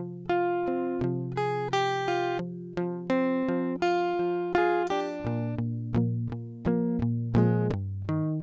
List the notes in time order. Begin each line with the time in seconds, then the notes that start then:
0.00 F3
0.31 F4
0.70 C4
1.03 C3 F3
1.39 G#4
1.75 G4
2.10 F4
2.41 F3
2.79 F3
3.11 C4
3.50 F3
3.84 F4
4.21 F3
4.57 F4 G#4
4.89 D4 G4
5.29 A#2
5.60 A#2
5.96 A#2 F3 A#3
6.30 F3
6.34 A#2
6.66 A#2 F3 A#3
7.01 A#2 F3
7.36 A#2 F3
7.41 G#3
7.72 G2
8.10 D#3